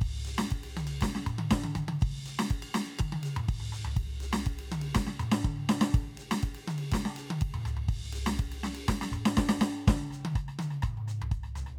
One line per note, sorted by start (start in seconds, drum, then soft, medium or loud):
0.01 kick medium
0.01 hi-hat pedal medium
0.01 ride loud
0.25 hi-hat pedal medium
0.25 ride loud
0.38 snare loud
0.50 kick medium
0.50 hi-hat pedal medium
0.50 ride loud
0.64 ride loud
0.77 hi-hat pedal loud
0.77 high tom loud
0.87 ride bell loud
1.01 kick medium
1.01 snare loud
1.01 hi-hat pedal medium
1.01 ride loud
1.15 snare medium
1.26 kick soft
1.26 hi-hat pedal medium
1.26 mid tom loud
1.39 high tom loud
1.49 kick medium
1.49 snare loud
1.49 hi-hat pedal medium
1.64 high tom loud
1.75 kick soft
1.75 hi-hat pedal loud
1.75 high tom loud
1.88 cross-stick soft
1.88 high tom loud
1.99 kick loud
1.99 hi-hat pedal soft
1.99 ride loud
2.26 hi-hat pedal medium
2.26 ride bell medium
2.39 snare loud
2.50 kick medium
2.50 hi-hat pedal medium
2.50 ride loud
2.63 ride bell loud
2.74 snare loud
2.74 hi-hat pedal medium
2.86 ride bell medium
2.99 kick medium
2.99 hi-hat pedal medium
2.99 high tom loud
2.99 ride bell loud
3.12 high tom loud
3.23 hi-hat pedal medium
3.23 ride loud
3.37 mid tom loud
3.49 kick medium
3.49 hi-hat pedal medium
3.49 ride loud
3.60 floor tom medium
3.73 floor tom medium
3.73 hi-hat pedal loud
3.85 floor tom loud
3.97 kick medium
3.97 hi-hat pedal medium
3.97 ride loud
4.21 hi-hat pedal medium
4.21 ride loud
4.33 snare loud
4.46 kick medium
4.46 hi-hat pedal medium
4.46 ride loud
4.59 ride loud
4.72 hi-hat pedal loud
4.72 high tom loud
4.82 ride loud
4.95 kick medium
4.95 snare loud
4.95 hi-hat pedal medium
4.95 ride loud
5.07 snare medium
5.20 hi-hat pedal medium
5.20 mid tom loud
5.32 snare loud
5.44 kick medium
5.44 hi-hat pedal medium
5.44 high tom loud
5.56 high tom medium
5.66 kick soft
5.66 snare loud
5.66 hi-hat pedal loud
5.81 snare loud
5.93 kick loud
5.93 hi-hat pedal medium
5.93 ride loud
6.18 hi-hat pedal medium
6.18 ride loud
6.31 snare loud
6.43 kick medium
6.43 hi-hat pedal medium
6.43 ride loud
6.55 ride loud
6.68 hi-hat pedal medium
6.68 high tom loud
6.78 ride loud
6.92 kick soft
6.92 kick medium
6.92 snare loud
6.92 hi-hat pedal medium
6.92 ride loud
7.05 snare medium
7.16 hi-hat pedal medium
7.16 ride loud
7.31 high tom loud
7.41 kick medium
7.41 hi-hat pedal medium
7.41 ride loud
7.54 mid tom loud
7.65 floor tom loud
7.65 hi-hat pedal medium
7.77 floor tom loud
7.89 kick medium
7.89 hi-hat pedal medium
7.89 ride loud
8.13 hi-hat pedal medium
8.13 ride loud
8.27 snare loud
8.39 kick medium
8.39 hi-hat pedal medium
8.39 ride loud
8.52 ride loud
8.64 snare loud
8.64 hi-hat pedal medium
8.75 ride loud
8.88 kick medium
8.88 snare loud
8.88 hi-hat pedal medium
8.88 ride loud
9.02 snare loud
9.12 kick soft
9.12 hi-hat pedal medium
9.12 mid tom loud
9.26 snare loud
9.36 kick medium
9.36 snare loud
9.36 hi-hat pedal medium
9.49 snare loud
9.59 kick soft
9.59 snare loud
9.59 hi-hat pedal medium
9.87 kick loud
9.87 snare loud
9.87 hi-hat pedal medium
9.87 high tom loud
10.11 cross-stick soft
10.11 hi-hat pedal medium
10.25 high tom loud
10.36 kick medium
10.36 cross-stick medium
10.36 hi-hat pedal medium
10.48 cross-stick medium
10.59 hi-hat pedal loud
10.59 high tom loud
10.71 cross-stick medium
10.83 kick medium
10.83 cross-stick medium
10.83 hi-hat pedal medium
10.83 mid tom loud
10.97 mid tom medium
11.08 cross-stick soft
11.08 hi-hat pedal medium
11.22 floor tom loud
11.32 kick medium
11.32 cross-stick soft
11.32 hi-hat pedal medium
11.44 cross-stick medium
11.56 floor tom loud
11.56 hi-hat pedal medium
11.66 cross-stick soft